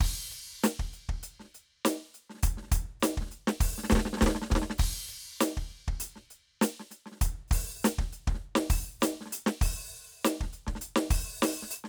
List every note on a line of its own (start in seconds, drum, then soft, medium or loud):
0.01 kick loud
0.01 crash loud
0.32 closed hi-hat medium
0.53 kick soft
0.64 closed hi-hat loud
0.64 snare loud
0.80 kick medium
0.94 closed hi-hat soft
1.09 kick medium
1.24 closed hi-hat medium
1.40 snare soft
1.45 snare soft
1.55 closed hi-hat soft
1.85 closed hi-hat loud
1.85 snare loud
2.15 closed hi-hat soft
2.30 snare soft
2.35 snare soft
2.38 snare soft
2.42 closed hi-hat loud
2.42 kick loud
2.42 snare soft
2.58 snare soft
2.63 snare soft
2.72 closed hi-hat loud
2.72 kick loud
3.00 closed hi-hat loud
3.00 snare loud
3.00 hi-hat pedal soft
3.18 kick medium
3.18 snare soft
3.27 snare soft
3.31 closed hi-hat soft
3.31 snare soft
3.48 snare loud
3.61 open hi-hat loud
3.61 kick loud
3.78 snare medium
3.84 snare medium
3.90 kick loud
3.90 snare loud
3.90 hi-hat pedal medium
3.96 snare loud
3.99 snare medium
4.06 snare medium
4.13 snare medium
4.18 snare medium
4.21 kick loud
4.21 snare loud
4.21 hi-hat pedal medium
4.27 snare loud
4.29 snare medium
4.36 snare medium
4.42 snare medium
4.45 snare soft
4.51 kick loud
4.51 snare medium
4.51 hi-hat pedal soft
4.56 snare loud
4.62 snare medium
4.70 snare medium
4.77 kick soft
4.77 hi-hat pedal medium
4.77 crash loud
4.80 kick loud
5.09 closed hi-hat soft
5.41 closed hi-hat loud
5.41 snare loud
5.58 kick medium
5.71 closed hi-hat soft
5.88 kick medium
6.00 closed hi-hat loud
6.16 snare soft
6.31 closed hi-hat soft
6.62 closed hi-hat loud
6.62 snare loud
6.80 snare soft
6.91 closed hi-hat medium
6.91 snare soft
7.06 snare soft
7.12 snare soft
7.20 closed hi-hat loud
7.20 kick loud
7.20 snare soft
7.48 kick loud
7.48 hi-hat pedal soft
7.53 open hi-hat loud
7.85 closed hi-hat loud
7.85 snare loud
7.85 hi-hat pedal medium
7.99 kick loud
7.99 snare soft
8.13 closed hi-hat medium
8.28 kick loud
8.28 snare soft
8.35 snare soft
8.56 snare loud
8.70 open hi-hat loud
8.70 kick loud
9.01 closed hi-hat loud
9.01 snare loud
9.01 hi-hat pedal medium
9.21 snare soft
9.26 snare soft
9.30 closed hi-hat loud
9.30 snare soft
9.47 snare loud
9.62 open hi-hat loud
9.62 kick loud
9.93 open hi-hat soft
10.25 open hi-hat loud
10.25 snare loud
10.25 hi-hat pedal medium
10.41 kick medium
10.41 snare soft
10.53 closed hi-hat soft
10.67 kick medium
10.67 snare medium
10.76 snare soft
10.82 closed hi-hat loud
10.96 snare loud
11.11 open hi-hat loud
11.11 kick loud
11.43 open hi-hat loud
11.43 snare loud
11.63 kick soft
11.63 snare soft
11.71 open hi-hat loud
11.71 hi-hat pedal soft
11.85 snare medium